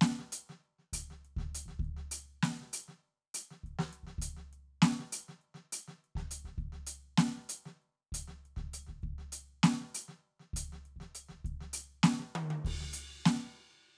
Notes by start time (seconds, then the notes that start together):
0.01 snare
0.18 snare
0.32 closed hi-hat
0.49 snare
0.64 closed hi-hat
0.79 snare
0.93 closed hi-hat, kick
1.10 snare
1.25 closed hi-hat
1.36 kick, snare
1.55 closed hi-hat
1.66 kick, snare
1.79 kick
1.84 closed hi-hat
1.97 snare
2.11 closed hi-hat
2.43 snare
2.61 snare
2.73 closed hi-hat
2.88 snare
3.34 closed hi-hat
3.51 snare
3.64 kick, closed hi-hat
3.79 snare
3.93 closed hi-hat
4.03 kick, snare
4.18 closed hi-hat, kick
4.37 snare
4.53 closed hi-hat
4.82 snare
4.99 snare
5.12 closed hi-hat
5.28 snare
5.42 closed hi-hat
5.54 snare
5.72 closed hi-hat
5.88 snare
6.04 closed hi-hat
6.15 kick, snare
6.31 closed hi-hat
6.45 kick, snare
6.58 kick, closed hi-hat
6.72 snare
6.87 closed hi-hat
7.17 snare
7.36 snare
7.49 closed hi-hat
7.66 snare
7.82 closed hi-hat
8.12 closed hi-hat, kick
8.28 snare
8.45 closed hi-hat
8.56 kick, snare
8.73 closed hi-hat
8.87 kick, snare
9.03 kick, closed hi-hat
9.18 snare
9.32 closed hi-hat
9.63 snare
9.80 snare
9.95 closed hi-hat
10.08 snare
10.39 snare
10.53 closed hi-hat, kick
10.72 snare
10.85 closed hi-hat
10.96 kick
11.00 snare
11.15 closed hi-hat
11.29 kick, snare
11.45 kick, closed hi-hat
11.61 snare
11.73 closed hi-hat
12.03 snare
12.19 snare
12.35 high tom
12.50 high tom
12.65 kick, crash
12.81 snare
12.93 closed hi-hat
13.26 snare